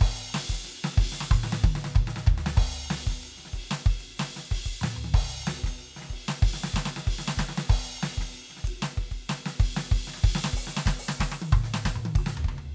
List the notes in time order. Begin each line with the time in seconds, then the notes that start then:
0.01 kick, crash
0.33 snare, hi-hat pedal, ride
0.49 kick, snare
0.63 snare, hi-hat pedal, ride
0.84 snare
0.97 kick, ride
1.12 snare
1.20 snare
1.31 kick, mid tom
1.43 snare
1.52 snare
1.64 kick, high tom
1.75 snare
1.84 snare
1.95 kick, mid tom
2.07 snare
2.16 snare
2.26 kick, floor tom
2.38 snare
2.46 snare
2.54 kick, crash
2.57 kick
2.90 snare, hi-hat pedal, ride
3.07 kick, snare
3.22 hi-hat pedal, ride
3.37 snare
3.45 snare
3.53 kick, hi-hat pedal, ride
3.71 snare
3.85 kick, ride
4.01 ride
4.17 snare, hi-hat pedal, ride
4.36 snare
4.51 kick, ride
4.66 kick
4.81 snare, hi-hat pedal, mid tom
4.96 floor tom
5.04 high tom
5.14 kick, crash
5.47 snare, hi-hat pedal, ride
5.64 kick, snare
5.77 hi-hat pedal, ride
5.96 snare
6.01 snare
6.05 snare, hi-hat pedal
6.10 kick, ride
6.28 snare
6.42 kick, ride
6.53 snare
6.74 kick, snare
6.85 snare
6.96 snare
7.07 kick, ride
7.18 snare
7.28 snare
7.37 kick, snare
7.49 snare
7.57 snare
7.69 kick, crash
8.02 snare, hi-hat pedal, ride
8.17 kick, snare
8.33 snare, hi-hat pedal, ride
8.50 snare
8.57 snare
8.64 kick, hi-hat pedal, ride
8.82 snare
8.95 kick, hi-hat pedal, ride
9.11 kick, ride
9.28 snare, hi-hat pedal, ride
9.46 snare
9.59 kick, hi-hat pedal, ride
9.76 snare
9.91 kick, ride
10.07 snare
10.14 cross-stick, snare
10.23 kick, ride
10.35 snare
10.44 snare
10.53 open hi-hat, kick
10.67 snare
10.77 snare
10.86 kick, snare
10.99 open hi-hat
11.08 snare
11.20 kick, snare
11.32 snare
11.42 high tom
11.52 kick, mid tom
11.64 snare
11.74 snare
11.85 kick, snare
11.96 mid tom
12.05 high tom
12.15 kick, mid tom, ride
12.26 snare
12.37 floor tom
12.44 kick
12.48 floor tom
12.58 floor tom